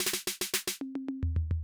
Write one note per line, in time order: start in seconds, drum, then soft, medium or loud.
0.00 snare loud
0.06 snare loud
0.13 snare loud
0.27 snare loud
0.41 snare loud
0.54 snare loud
0.68 snare loud
0.81 high tom loud
0.95 high tom loud
1.09 high tom loud
1.23 floor tom loud
1.36 floor tom loud
1.51 floor tom loud